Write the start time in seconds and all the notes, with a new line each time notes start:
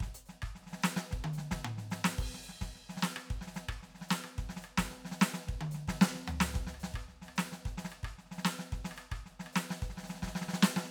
0.01 kick, snare
0.07 kick
0.15 open hi-hat
0.26 snare, hi-hat pedal
0.43 kick, cross-stick
0.56 snare
0.63 snare
0.67 snare
0.74 snare
0.79 snare, hi-hat pedal
0.84 snare
0.97 snare
1.12 kick, snare
1.20 kick
1.25 high tom
1.34 hi-hat pedal
1.39 snare
1.52 kick, snare
1.65 mid tom
1.78 snare
1.91 snare, hi-hat pedal
2.05 snare
2.19 kick, crash
2.31 kick, snare
2.44 hi-hat pedal
2.50 snare
2.62 kick, snare
2.76 snare
2.82 snare
2.87 snare
2.90 snare
2.98 snare
3.02 snare, hi-hat pedal
3.17 cross-stick
3.31 kick, snare
3.38 kick, snare
3.48 snare
3.55 snare, hi-hat pedal
3.69 kick, cross-stick
3.83 snare
3.90 snare
3.95 snare
4.02 snare
4.09 snare, hi-hat pedal
4.25 cross-stick
4.39 kick, snare
4.50 snare
4.57 snare
4.63 cross-stick, hi-hat pedal
4.78 kick, snare
4.84 snare
4.91 snare
4.98 snare
5.04 snare
5.12 snare
5.20 snare, hi-hat pedal
5.34 snare
5.48 kick, snare
5.56 kick
5.62 high tom
5.72 snare, hi-hat pedal
5.88 kick, snare
6.02 snare
6.15 snare
6.28 hi-hat pedal, floor tom
6.41 snare
6.55 kick, snare
6.62 kick
6.67 snare
6.75 cross-stick
6.81 snare, hi-hat pedal
6.95 kick, cross-stick
7.09 snare
7.15 snare
7.21 snare
7.29 cross-stick
7.37 snare, hi-hat pedal
7.53 snare
7.66 kick, snare
7.78 snare
7.85 snare
7.91 cross-stick, hi-hat pedal
8.04 kick, cross-stick
8.19 snare
8.26 snare
8.32 snare
8.39 snare
8.45 snare, hi-hat pedal
8.60 snare
8.73 kick, snare
8.85 snare
8.92 cross-stick
8.97 cross-stick, hi-hat pedal
9.12 kick, cross-stick
9.26 snare
9.33 snare
9.37 snare
9.40 snare
9.47 cross-stick
9.54 snare, hi-hat pedal
9.71 snare
9.83 kick, snare
9.90 snare
9.96 snare
9.98 snare
10.04 snare, hi-hat pedal
10.10 snare
10.16 snare
10.23 kick, snare
10.28 snare
10.36 snare
10.42 snare
10.49 snare
10.54 snare
10.60 snare
10.63 snare, hi-hat pedal
10.77 snare
10.85 snare